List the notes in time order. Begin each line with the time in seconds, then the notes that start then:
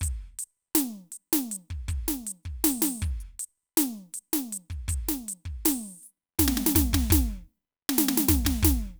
0.01 closed hi-hat, kick, hi-hat pedal
0.22 closed hi-hat
0.39 closed hi-hat
0.75 closed hi-hat, snare
1.12 closed hi-hat
1.33 snare
1.51 closed hi-hat
1.70 kick, closed hi-hat
1.88 closed hi-hat, kick
2.08 snare
2.27 closed hi-hat
2.43 kick, closed hi-hat
2.64 open hi-hat, snare
2.82 open hi-hat, snare
3.02 kick, hi-hat pedal
3.20 closed hi-hat
3.39 closed hi-hat
3.77 closed hi-hat, snare
3.97 closed hi-hat
4.13 closed hi-hat, hi-hat pedal
4.33 snare
4.52 closed hi-hat
4.70 kick, closed hi-hat
4.88 closed hi-hat, kick
5.08 snare
5.28 closed hi-hat
5.45 kick
5.65 open hi-hat, snare
6.03 hi-hat pedal
6.39 kick, snare
6.48 snare
6.57 snare
6.66 snare
6.75 kick, snare
6.93 kick, snare
7.10 kick, snare
7.89 snare
7.98 snare
8.08 snare
8.17 snare
8.28 kick, snare
8.45 kick, snare
8.62 kick, snare